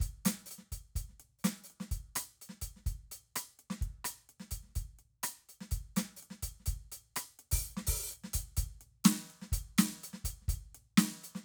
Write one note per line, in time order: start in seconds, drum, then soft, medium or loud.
0.01 closed hi-hat medium
0.01 kick soft
0.26 closed hi-hat loud
0.26 snare medium
0.47 hi-hat pedal medium
0.51 closed hi-hat soft
0.59 snare soft
0.72 closed hi-hat medium
0.72 kick soft
0.96 closed hi-hat medium
0.96 kick soft
1.10 snare soft
1.20 closed hi-hat soft
1.39 hi-hat pedal soft
1.45 closed hi-hat medium
1.45 snare medium
1.64 hi-hat pedal medium
1.71 closed hi-hat soft
1.81 snare soft
1.92 closed hi-hat medium
1.92 kick soft
2.16 closed hi-hat medium
2.16 cross-stick medium
2.42 closed hi-hat soft
2.50 snare soft
2.62 closed hi-hat medium
2.62 kick soft
2.77 snare soft
2.83 snare soft
2.85 closed hi-hat soft
2.85 kick soft
2.85 snare soft
3.12 closed hi-hat soft
3.36 closed hi-hat medium
3.36 cross-stick medium
3.60 closed hi-hat soft
3.71 snare soft
3.82 kick soft
3.82 closed hi-hat soft
4.05 closed hi-hat medium
4.05 cross-stick medium
4.30 closed hi-hat soft
4.40 snare soft
4.52 closed hi-hat medium
4.52 kick soft
4.63 snare soft
4.67 snare soft
4.69 snare soft
4.76 closed hi-hat medium
4.76 kick soft
4.99 closed hi-hat soft
5.24 closed hi-hat medium
5.24 cross-stick medium
5.49 closed hi-hat soft
5.61 snare soft
5.72 closed hi-hat medium
5.72 kick soft
5.97 closed hi-hat medium
5.97 snare medium
6.17 hi-hat pedal medium
6.23 closed hi-hat soft
6.31 snare soft
6.43 closed hi-hat medium
6.43 kick soft
6.60 snare soft
6.67 closed hi-hat medium
6.67 kick soft
6.92 closed hi-hat medium
7.17 closed hi-hat medium
7.17 cross-stick medium
7.40 closed hi-hat soft
7.52 open hi-hat loud
7.52 kick soft
7.71 hi-hat pedal soft
7.77 snare soft
7.87 open hi-hat loud
7.87 kick soft
8.11 hi-hat pedal medium
8.24 snare soft
8.34 closed hi-hat medium
8.34 kick soft
8.57 closed hi-hat medium
8.57 kick soft
8.64 kick soft
8.81 closed hi-hat soft
9.05 closed hi-hat medium
9.05 snare loud
9.24 hi-hat pedal soft
9.31 closed hi-hat soft
9.42 snare soft
9.53 closed hi-hat medium
9.53 kick soft
9.79 closed hi-hat loud
9.79 snare medium
10.04 closed hi-hat soft
10.14 snare soft
10.25 closed hi-hat medium
10.25 kick soft
10.42 snare soft
10.49 closed hi-hat medium
10.49 kick soft
10.54 kick soft
10.75 closed hi-hat soft
10.98 closed hi-hat medium
10.98 snare loud
11.24 closed hi-hat soft
11.36 snare soft